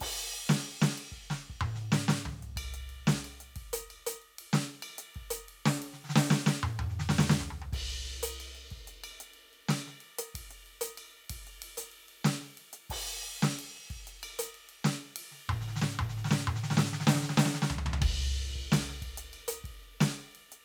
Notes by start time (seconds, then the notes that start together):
0.01 kick, crash
0.18 closed hi-hat
0.33 ride bell
0.49 snare
0.65 ride bell
0.82 snare
0.98 ride bell
1.12 kick
1.30 snare
1.50 kick
1.61 high tom
1.75 snare
1.92 snare
2.08 snare
2.26 floor tom
2.43 kick, closed hi-hat
2.57 kick, ride bell
2.74 closed hi-hat
2.90 ride
3.07 snare
3.25 ride bell
3.41 closed hi-hat
3.56 kick, ride
3.73 closed hi-hat
3.91 ride bell
4.07 closed hi-hat
4.22 ride
4.39 ride
4.53 snare
4.67 snare
4.83 ride bell
4.99 closed hi-hat
5.15 kick, ride
5.31 closed hi-hat
5.49 ride
5.66 snare
5.82 ride
5.93 snare
6.04 snare
6.10 snare
6.16 snare
6.31 snare
6.47 snare
6.63 high tom
6.79 mid tom
6.90 snare
7.00 snare
7.09 snare
7.19 snare
7.30 snare
7.41 floor tom
7.62 floor tom
7.73 kick, ride
7.90 closed hi-hat
8.07 ride
8.23 closed hi-hat
8.40 ride bell
8.55 closed hi-hat
8.71 kick, ride
8.88 closed hi-hat
9.04 ride bell
9.20 closed hi-hat
9.34 ride
9.53 ride
9.69 snare, ride bell
9.87 snare
10.01 ride
10.19 closed hi-hat
10.35 kick, ride
10.51 closed hi-hat
10.66 ride
10.81 closed hi-hat
10.98 ride bell
11.30 kick, ride
11.47 closed hi-hat
11.62 ride
11.78 closed hi-hat
11.92 ride
12.09 ride
12.25 snare, ride
12.41 snare
12.58 ride
12.73 closed hi-hat
12.90 kick, crash
13.07 closed hi-hat
13.23 ride
13.43 snare
13.59 ride
13.78 closed hi-hat
13.90 kick, ride
14.07 closed hi-hat
14.23 ride bell
14.39 closed hi-hat
14.55 ride
14.69 ride
14.85 snare, ride bell
15.04 snare
15.16 ride
15.32 snare
15.49 kick, high tom
15.61 snare
15.68 snare
15.76 snare
15.82 snare
15.94 snare
15.99 kick, high tom
16.09 snare
16.17 snare
16.25 snare
16.31 snare
16.40 snare
16.48 high tom
16.56 snare
16.64 snare
16.70 snare
16.77 snare
16.86 snare
16.91 kick, snare
17.00 snare
17.07 snare
17.15 snare
17.23 snare
17.30 snare
17.38 snare
17.46 snare
17.54 snare
17.62 snare
17.70 floor tom
17.79 floor tom
17.86 floor tom
17.94 floor tom
18.02 kick, ride
18.56 kick
18.72 snare, ride bell
18.89 snare
19.02 kick, ride
19.18 closed hi-hat
19.33 ride bell
19.48 closed hi-hat
19.64 kick, ride
19.84 ride
20.01 snare, ride bell
20.19 snare
20.35 ride
20.52 closed hi-hat